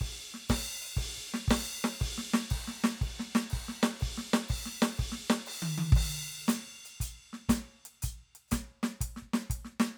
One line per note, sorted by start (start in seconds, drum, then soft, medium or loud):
0.01 kick medium
0.01 ride medium
0.34 snare soft
0.49 kick medium
0.49 snare loud
0.49 hi-hat pedal medium
0.49 crash loud
0.82 open hi-hat medium
0.96 kick medium
0.96 hi-hat pedal soft
0.96 ride loud
1.18 kick soft
1.34 snare medium
1.48 kick medium
1.48 snare loud
1.48 crash loud
1.84 snare loud
2.01 kick medium
2.01 hi-hat pedal soft
2.01 ride loud
2.18 snare medium
2.34 snare loud
2.51 kick medium
2.51 hi-hat pedal soft
2.51 crash medium
2.68 snare medium
2.84 snare loud
3.02 kick medium
3.02 hi-hat pedal soft
3.02 ride medium
3.20 snare medium
3.35 snare loud
3.50 kick medium
3.50 hi-hat pedal soft
3.50 crash medium
3.69 snare medium
3.83 snare loud
4.00 kick medium
4.00 hi-hat pedal soft
4.00 ride medium
4.18 snare medium
4.34 snare loud
4.49 kick medium
4.49 hi-hat pedal soft
4.49 crash loud
4.66 snare medium
4.82 snare loud
4.98 kick medium
4.98 hi-hat pedal soft
4.98 ride medium
5.12 snare medium
5.19 kick soft
5.30 snare loud
5.47 crash loud
5.62 high tom loud
5.78 high tom loud
5.93 kick loud
5.93 crash loud
6.46 closed hi-hat loud
6.46 snare loud
6.46 hi-hat pedal medium
6.85 closed hi-hat medium
7.01 closed hi-hat loud
7.01 kick medium
7.33 snare medium
7.49 closed hi-hat loud
7.49 kick medium
7.49 snare loud
7.86 closed hi-hat medium
8.03 closed hi-hat loud
8.03 kick medium
8.35 closed hi-hat medium
8.48 closed hi-hat loud
8.48 snare loud
8.48 hi-hat pedal soft
8.53 kick medium
8.83 snare loud
9.01 kick medium
9.01 closed hi-hat loud
9.17 snare soft
9.22 kick soft
9.34 snare loud
9.50 kick medium
9.50 closed hi-hat loud
9.65 snare soft
9.80 snare loud